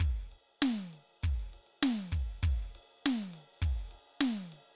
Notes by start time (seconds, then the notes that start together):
0.02 kick, ride
0.32 ride
0.62 snare, ride
0.93 ride
1.23 kick, ride
1.39 ride
1.53 hi-hat pedal, ride
1.66 ride
1.82 snare, ride
2.12 kick, ride
2.43 kick, ride
2.60 ride
2.75 hi-hat pedal, ride
3.03 snare, hi-hat pedal, ride
3.21 ride
3.31 hi-hat pedal, ride
3.62 kick, ride
3.79 ride
3.90 hi-hat pedal, ride
4.20 snare, hi-hat pedal, ride
4.38 ride
4.48 hi-hat pedal, ride